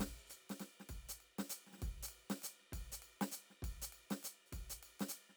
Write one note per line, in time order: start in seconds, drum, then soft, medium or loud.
0.01 snare medium
0.01 ride medium
0.30 hi-hat pedal soft
0.30 ride soft
0.50 snare soft
0.50 ride soft
0.60 snare soft
0.60 ride soft
0.81 snare soft
0.90 kick soft
0.90 ride medium
1.09 hi-hat pedal medium
1.21 ride soft
1.39 snare medium
1.39 ride soft
1.50 hi-hat pedal medium
1.50 ride medium
1.67 snare soft
1.71 snare soft
1.74 snare soft
1.79 kick soft
1.79 snare soft
1.79 ride medium
2.03 hi-hat pedal medium
2.09 ride soft
2.31 snare medium
2.31 ride medium
2.43 hi-hat pedal medium
2.43 ride soft
2.61 snare soft
2.73 kick soft
2.73 ride medium
2.93 hi-hat pedal medium
3.03 ride soft
3.22 snare medium
3.22 ride medium
3.32 hi-hat pedal medium
3.32 ride soft
3.51 snare soft
3.63 kick soft
3.63 ride medium
3.82 hi-hat pedal medium
3.93 ride soft
4.11 snare medium
4.11 ride soft
4.24 hi-hat pedal medium
4.24 ride soft
4.47 hi-hat pedal soft
4.53 kick soft
4.53 ride medium
4.70 hi-hat pedal medium
4.83 ride soft
5.00 snare medium
5.00 ride soft
5.09 hi-hat pedal medium
5.09 ride soft
5.30 snare soft